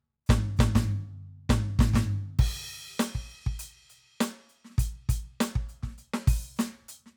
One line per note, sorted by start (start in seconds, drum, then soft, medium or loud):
0.27 kick loud
0.27 snare loud
0.27 floor tom loud
0.27 hi-hat pedal soft
0.57 kick loud
0.57 snare loud
0.57 floor tom loud
0.57 hi-hat pedal soft
0.75 kick medium
0.75 snare loud
0.75 floor tom loud
0.84 hi-hat pedal soft
1.50 kick loud
1.50 snare loud
1.50 floor tom loud
1.79 kick loud
1.79 snare loud
1.79 floor tom loud
1.94 kick medium
1.94 snare loud
1.94 floor tom loud
2.39 kick loud
2.39 crash loud
3.00 closed hi-hat loud
3.00 snare loud
3.15 kick medium
3.30 closed hi-hat soft
3.46 kick medium
3.46 crash soft
3.59 closed hi-hat loud
3.90 closed hi-hat medium
4.21 closed hi-hat loud
4.21 snare loud
4.49 closed hi-hat soft
4.65 snare soft
4.70 snare soft
4.74 snare soft
4.78 closed hi-hat loud
4.78 kick loud
4.78 snare soft
5.09 closed hi-hat loud
5.09 kick loud
5.41 closed hi-hat loud
5.41 snare loud
5.56 kick medium
5.69 closed hi-hat soft
5.83 kick medium
5.83 snare soft
5.87 snare soft
5.87 crash soft
5.90 snare soft
5.98 closed hi-hat soft
6.14 snare loud
6.28 open hi-hat loud
6.28 kick loud
6.57 closed hi-hat loud
6.57 snare loud
6.57 hi-hat pedal soft
6.83 kick soft
6.89 closed hi-hat loud
7.06 snare soft